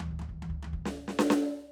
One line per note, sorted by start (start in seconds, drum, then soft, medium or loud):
0.00 floor tom medium
0.00 high tom medium
0.11 kick soft
0.19 floor tom medium
0.19 high tom medium
0.29 kick soft
0.42 floor tom medium
0.42 high tom medium
0.50 kick soft
0.62 floor tom medium
0.62 high tom medium
0.73 kick medium
0.85 snare loud
1.08 snare medium
1.19 snare loud
1.30 snare loud